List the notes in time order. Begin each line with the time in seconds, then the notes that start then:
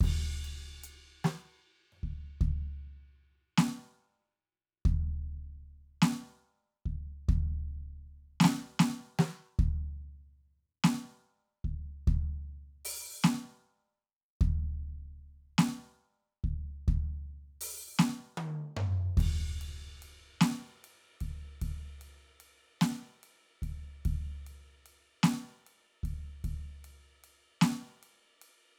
0.01 kick, hi-hat pedal, crash
0.21 kick
0.45 closed hi-hat
0.84 closed hi-hat
1.25 snare
1.42 snare
1.45 snare
1.49 snare
1.93 snare, floor tom, ride
2.04 kick
2.41 kick
3.58 snare
4.86 kick
6.02 snare
6.86 kick
7.29 kick
8.40 snare
8.45 snare
8.80 snare
9.19 snare
9.59 kick
10.84 snare
11.01 snare
11.65 kick
12.08 kick
12.85 open hi-hat
13.23 snare, hi-hat pedal
13.39 snare
14.41 kick
15.59 snare
16.44 kick
16.88 kick
17.61 open hi-hat
17.97 snare, hi-hat pedal
18.38 high tom
18.77 floor tom
19.18 kick, ride, crash
19.62 ride
20.03 ride
20.41 snare, ride
20.84 ride
21.21 kick, ride
21.62 kick, ride
22.02 ride
22.41 ride
22.82 snare, ride
23.23 ride
23.62 kick, ride
24.05 kick, ride
24.47 ride
24.86 ride
25.23 snare, ride
25.67 ride
26.04 kick, ride
26.45 kick, ride
26.85 ride
27.24 ride
27.62 snare, ride
28.03 ride
28.42 ride